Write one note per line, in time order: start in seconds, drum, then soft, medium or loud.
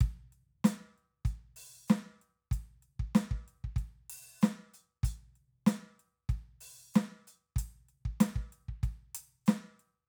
0.01 kick loud
0.01 closed hi-hat soft
0.33 closed hi-hat soft
0.65 closed hi-hat loud
0.65 snare loud
0.98 closed hi-hat soft
1.25 closed hi-hat soft
1.25 kick medium
1.57 open hi-hat medium
1.88 snare loud
1.88 closed hi-hat soft
1.88 hi-hat pedal medium
2.22 closed hi-hat soft
2.52 kick medium
2.52 closed hi-hat medium
2.83 closed hi-hat soft
3.00 kick medium
3.15 closed hi-hat medium
3.15 snare loud
3.31 kick medium
3.48 closed hi-hat soft
3.64 kick soft
3.76 kick medium
3.76 closed hi-hat soft
4.10 open hi-hat medium
4.42 closed hi-hat medium
4.42 snare loud
4.42 hi-hat pedal medium
4.74 closed hi-hat soft
5.04 closed hi-hat medium
5.04 kick medium
5.36 closed hi-hat soft
5.67 closed hi-hat medium
5.67 snare loud
6.00 closed hi-hat soft
6.29 kick medium
6.29 closed hi-hat soft
6.61 open hi-hat medium
6.94 snare loud
6.94 closed hi-hat soft
6.94 hi-hat pedal medium
7.28 closed hi-hat soft
7.56 kick medium
7.56 closed hi-hat medium
7.89 closed hi-hat soft
8.06 kick medium
8.21 snare loud
8.21 closed hi-hat medium
8.36 kick medium
8.53 closed hi-hat soft
8.69 kick soft
8.83 kick medium
8.83 closed hi-hat soft
9.15 open hi-hat loud
9.46 closed hi-hat medium
9.46 snare loud
9.46 hi-hat pedal medium
9.80 closed hi-hat soft